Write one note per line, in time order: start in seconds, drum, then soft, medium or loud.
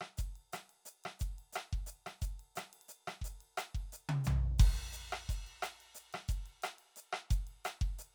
0.01 cross-stick medium
0.17 kick medium
0.17 hi-hat pedal medium
0.17 ride soft
0.36 ride soft
0.53 cross-stick medium
0.53 hi-hat pedal medium
0.53 ride soft
0.69 ride soft
0.85 hi-hat pedal medium
0.85 ride soft
1.04 cross-stick medium
1.04 ride soft
1.19 kick medium
1.19 hi-hat pedal medium
1.19 ride soft
1.39 ride soft
1.53 cross-stick medium
1.53 hi-hat pedal medium
1.53 ride soft
1.73 kick medium
1.73 ride soft
1.86 hi-hat pedal medium
1.86 ride soft
2.06 cross-stick medium
2.06 ride soft
2.22 kick medium
2.22 hi-hat pedal medium
2.22 ride soft
2.40 ride soft
2.56 cross-stick medium
2.56 hi-hat pedal medium
2.56 ride soft
2.73 ride soft
2.81 ride soft
2.89 hi-hat pedal medium
2.89 ride soft
3.08 cross-stick medium
3.08 ride soft
3.22 kick soft
3.22 hi-hat pedal medium
3.22 ride soft
3.41 ride soft
3.57 cross-stick medium
3.57 hi-hat pedal medium
3.57 ride soft
3.75 kick medium
3.75 ride soft
3.92 hi-hat pedal medium
3.92 ride soft
4.09 high tom loud
4.24 floor tom loud
4.24 hi-hat pedal medium
4.59 kick loud
4.59 hi-hat pedal medium
4.59 ride medium
4.59 crash medium
4.77 ride soft
4.93 hi-hat pedal medium
4.93 ride soft
5.12 cross-stick medium
5.12 ride soft
5.29 kick medium
5.29 hi-hat pedal medium
5.29 ride soft
5.47 ride soft
5.63 cross-stick medium
5.63 hi-hat pedal medium
5.63 ride soft
5.80 ride soft
5.95 hi-hat pedal medium
5.95 ride soft
6.13 cross-stick medium
6.13 ride soft
6.28 kick medium
6.28 hi-hat pedal medium
6.28 ride soft
6.46 ride soft
6.63 cross-stick medium
6.63 hi-hat pedal medium
6.63 ride soft
6.79 ride soft
6.96 hi-hat pedal medium
6.96 ride soft
7.13 cross-stick medium
7.30 kick medium
7.30 hi-hat pedal medium
7.30 ride soft
7.47 ride soft
7.65 cross-stick medium
7.65 hi-hat pedal medium
7.65 ride soft
7.81 kick medium
7.81 ride soft
7.99 hi-hat pedal medium
7.99 ride soft